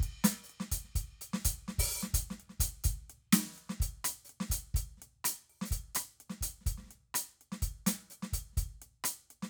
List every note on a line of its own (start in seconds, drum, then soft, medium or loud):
0.01 kick soft
0.01 closed hi-hat medium
0.25 closed hi-hat loud
0.25 snare medium
0.45 hi-hat pedal soft
0.51 closed hi-hat soft
0.61 snare soft
0.73 closed hi-hat medium
0.73 kick soft
0.85 snare soft
0.96 closed hi-hat medium
0.96 kick soft
1.02 kick soft
1.22 closed hi-hat medium
1.34 snare medium
1.46 closed hi-hat loud
1.46 kick soft
1.51 kick soft
1.69 snare soft
1.79 open hi-hat loud
1.79 kick soft
1.85 kick soft
2.02 snare soft
2.02 hi-hat pedal soft
2.15 closed hi-hat loud
2.15 kick soft
2.31 snare soft
2.41 closed hi-hat soft
2.50 snare soft
2.61 closed hi-hat loud
2.61 kick soft
2.85 closed hi-hat medium
2.85 kick soft
2.92 kick soft
3.11 closed hi-hat soft
3.34 closed hi-hat loud
3.34 snare loud
3.54 hi-hat pedal soft
3.59 closed hi-hat soft
3.70 snare soft
3.81 closed hi-hat medium
3.81 kick soft
4.05 closed hi-hat loud
4.05 cross-stick medium
4.26 hi-hat pedal soft
4.30 closed hi-hat soft
4.41 snare medium
4.51 closed hi-hat loud
4.51 kick soft
4.75 closed hi-hat medium
4.75 kick soft
4.98 snare soft
5.03 closed hi-hat soft
5.25 closed hi-hat loud
5.25 cross-stick medium
5.51 open hi-hat soft
5.62 snare soft
5.66 hi-hat pedal medium
5.72 closed hi-hat medium
5.72 kick soft
5.96 closed hi-hat loud
5.96 cross-stick medium
6.21 closed hi-hat soft
6.31 snare soft
6.42 closed hi-hat medium
6.42 kick soft
6.62 snare soft
6.67 closed hi-hat medium
6.67 kick soft
6.79 snare soft
6.83 snare soft
6.87 snare soft
6.90 snare soft
6.90 closed hi-hat soft
7.15 closed hi-hat loud
7.15 cross-stick medium
7.42 closed hi-hat soft
7.53 snare soft
7.63 closed hi-hat medium
7.63 kick soft
7.87 closed hi-hat loud
7.87 snare medium
8.11 closed hi-hat soft
8.11 hi-hat pedal medium
8.24 snare soft
8.34 closed hi-hat medium
8.34 kick soft
8.54 snare soft
8.58 closed hi-hat medium
8.58 kick soft
8.64 kick soft
8.83 closed hi-hat soft
9.05 closed hi-hat loud
9.05 cross-stick medium
9.31 closed hi-hat soft
9.44 snare soft